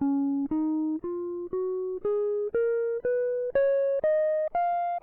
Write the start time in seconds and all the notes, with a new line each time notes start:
0.02 C#4
0.51 D#4
1.04 F4
1.53 F#4
2.05 G#4
2.55 A#4
3.05 B4
3.55 C#5
4.04 D#5
4.55 F5